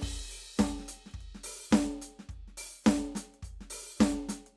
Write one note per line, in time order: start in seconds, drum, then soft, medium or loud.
0.01 kick medium
0.01 crash loud
0.31 open hi-hat medium
0.57 kick medium
0.57 snare loud
0.57 closed hi-hat medium
0.57 hi-hat pedal medium
0.79 snare soft
0.88 closed hi-hat loud
1.06 snare soft
1.11 kick soft
1.11 closed hi-hat soft
1.20 closed hi-hat soft
1.35 snare soft
1.43 open hi-hat loud
1.70 kick soft
1.70 snare loud
1.70 hi-hat pedal medium
2.02 closed hi-hat medium
2.19 snare soft
2.29 kick soft
2.29 closed hi-hat soft
2.48 snare soft
2.57 open hi-hat loud
2.84 kick soft
2.84 snare loud
2.84 hi-hat pedal medium
2.88 closed hi-hat medium
3.15 closed hi-hat loud
3.15 snare medium
3.34 closed hi-hat soft
3.42 closed hi-hat medium
3.42 kick soft
3.60 snare soft
3.70 open hi-hat loud
3.98 kick soft
3.98 snare loud
3.98 closed hi-hat medium
3.98 hi-hat pedal medium
4.23 kick soft
4.29 closed hi-hat loud
4.29 snare medium
4.46 closed hi-hat soft